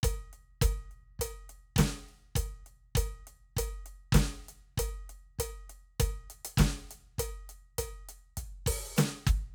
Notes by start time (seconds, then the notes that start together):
0.03 kick, closed hi-hat
0.33 closed hi-hat
0.61 kick, closed hi-hat
0.91 closed hi-hat
1.19 kick, closed hi-hat
1.49 closed hi-hat
1.76 kick, snare, closed hi-hat
2.08 closed hi-hat
2.35 kick, closed hi-hat
2.66 closed hi-hat
2.95 kick, closed hi-hat
3.27 closed hi-hat
3.57 kick, closed hi-hat
3.86 closed hi-hat
4.12 kick, snare, closed hi-hat
4.48 closed hi-hat
4.78 kick, closed hi-hat
5.09 closed hi-hat
5.39 kick, closed hi-hat
5.70 closed hi-hat
6.00 kick, closed hi-hat
6.30 closed hi-hat
6.45 closed hi-hat
6.57 kick, snare, closed hi-hat
6.91 closed hi-hat
7.18 kick, closed hi-hat
7.49 closed hi-hat
7.78 kick, closed hi-hat
8.09 closed hi-hat
8.37 kick, closed hi-hat
8.66 kick, open hi-hat
8.96 snare, closed hi-hat, hi-hat pedal
9.27 kick, open hi-hat